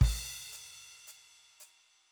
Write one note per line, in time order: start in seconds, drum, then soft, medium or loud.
0.01 kick loud
0.01 crash loud
0.52 hi-hat pedal medium
1.07 hi-hat pedal medium
1.60 hi-hat pedal medium